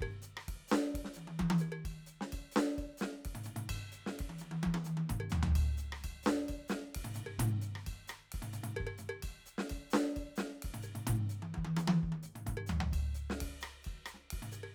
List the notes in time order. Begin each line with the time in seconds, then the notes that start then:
0.01 kick, percussion
0.07 kick
0.11 mid tom
0.22 hi-hat pedal
0.37 cross-stick
0.49 kick, ride
0.54 kick
0.68 snare, hi-hat pedal
0.77 snare
0.95 kick, ride
1.05 snare
1.14 hi-hat pedal, high tom
1.28 high tom
1.40 kick, high tom
1.50 high tom
1.59 hi-hat pedal, percussion
1.72 percussion
1.85 kick, ride bell
2.07 hi-hat pedal
2.21 snare
2.33 kick, ride bell
2.52 hi-hat pedal
2.56 snare
2.78 kick, ride bell
2.98 snare, hi-hat pedal
3.25 kick, ride
3.32 kick, mid tom
3.44 hi-hat pedal, mid tom
3.70 kick, ride bell
3.92 hi-hat pedal, ride
4.07 snare
4.19 kick, ride
4.30 high tom
4.39 hi-hat pedal, high tom
4.52 high tom
4.63 kick, high tom
4.75 high tom
4.85 hi-hat pedal, high tom
4.97 high tom
5.10 kick, mid tom
5.17 kick, percussion
5.30 floor tom, hi-hat pedal
5.43 floor tom
5.56 kick, ride bell
5.78 hi-hat pedal
5.93 cross-stick
6.04 kick, ride bell
6.10 kick
6.23 snare, hi-hat pedal
6.49 kick, ride bell
6.68 snare, hi-hat pedal
6.95 kick, ride
7.02 kick, mid tom
7.14 hi-hat pedal, mid tom
7.27 percussion
7.39 kick, mid tom
7.49 percussion
7.62 hi-hat pedal
7.76 cross-stick
7.87 kick, ride bell
7.93 kick
8.08 cross-stick, hi-hat pedal
8.32 kick, ride
8.42 mid tom
8.53 hi-hat pedal, mid tom
8.64 mid tom
8.77 kick, percussion
8.87 percussion
8.98 hi-hat pedal, mid tom
9.10 percussion
9.23 kick, ride bell
9.46 hi-hat pedal
9.59 snare
9.70 kick, ride bell
9.91 snare, hi-hat pedal
10.17 kick, ride bell
10.23 kick
10.36 snare, hi-hat pedal
10.63 kick, ride
10.70 kick, mid tom
10.83 hi-hat pedal, percussion
10.95 mid tom
11.07 kick, mid tom
11.15 kick
11.30 hi-hat pedal, high tom
11.43 high tom
11.55 kick, high tom
11.64 kick, high tom
11.77 hi-hat pedal, high tom
11.88 high tom
12.03 kick
12.09 kick, high tom
12.23 hi-hat pedal, mid tom
12.36 mid tom
12.47 kick, mid tom
12.57 percussion
12.67 floor tom, hi-hat pedal
12.81 floor tom
12.93 kick, ride bell
13.15 hi-hat pedal, ride
13.30 snare
13.41 kick, ride
13.48 kick
13.61 cross-stick, hi-hat pedal
13.82 hi-hat pedal, ride bell
13.87 kick
14.06 cross-stick, hi-hat pedal
14.14 snare
14.31 kick, ride
14.43 mid tom
14.52 hi-hat pedal, percussion
14.64 percussion